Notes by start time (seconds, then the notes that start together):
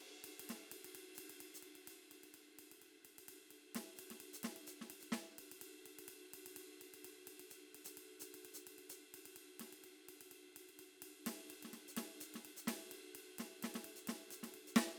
0.01 ride
0.24 ride
0.40 ride
0.50 snare, ride
0.72 ride
0.85 ride
0.95 ride
1.15 hi-hat pedal, ride
1.30 ride
1.41 ride
1.55 hi-hat pedal
1.63 ride
1.76 ride
1.88 hi-hat pedal, ride
2.12 ride
2.24 ride
2.34 ride
2.59 ride
2.72 ride
2.82 ride
3.05 ride
3.19 ride
3.29 ride
3.51 ride
3.75 snare, ride
3.97 hi-hat pedal, ride
4.11 snare, ride
4.21 ride
4.34 hi-hat pedal
4.44 snare, ride
4.57 ride
4.67 hi-hat pedal, ride
4.82 snare
4.90 ride
5.00 hi-hat pedal, ride
5.12 snare, ride
5.39 ride
5.52 ride
5.62 ride
5.86 ride
5.99 ride
6.08 ride
6.34 ride
6.46 ride
6.57 ride
6.82 ride
6.94 ride
7.05 ride
7.28 ride
7.40 ride
7.51 hi-hat pedal, ride
7.75 ride
7.85 hi-hat pedal, ride
7.98 ride
8.20 hi-hat pedal, ride
8.35 ride
8.45 ride
8.54 hi-hat pedal
8.67 ride
8.79 ride
8.90 hi-hat pedal, ride
9.14 ride
9.26 ride
9.36 ride
9.60 snare, ride
9.73 ride
9.84 ride
10.09 ride
10.21 ride
10.32 ride
10.57 ride
10.69 ride
10.79 ride
11.02 ride
11.27 snare, ride
11.49 hi-hat pedal, ride
11.63 snare, ride
11.73 snare, ride
11.88 hi-hat pedal
11.97 snare, ride
12.21 hi-hat pedal, ride
12.34 snare, ride
12.45 ride
12.57 hi-hat pedal
12.68 snare, ride
12.92 ride
13.15 ride
13.39 snare, ride
13.63 snare, ride
13.75 snare, ride
13.85 ride
13.96 hi-hat pedal
14.08 snare, ride
14.31 hi-hat pedal, ride
14.43 snare, ride
14.67 hi-hat pedal
14.76 snare, ride